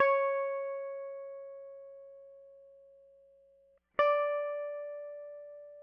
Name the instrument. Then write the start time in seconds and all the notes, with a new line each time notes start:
electric guitar
0.00 C#5
3.99 D5